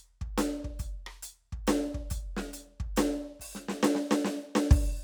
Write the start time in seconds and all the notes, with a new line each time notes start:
0.22 kick
0.38 closed hi-hat, snare
0.65 kick
0.80 closed hi-hat, kick
1.07 cross-stick
1.23 closed hi-hat
1.53 kick
1.68 closed hi-hat, snare
1.95 kick
2.11 closed hi-hat, kick
2.37 snare
2.54 closed hi-hat
2.80 kick
2.97 closed hi-hat, snare
3.40 open hi-hat, kick
3.55 snare
3.69 snare
3.83 snare
3.96 snare
4.11 snare
4.25 snare
4.56 snare
4.71 open hi-hat, kick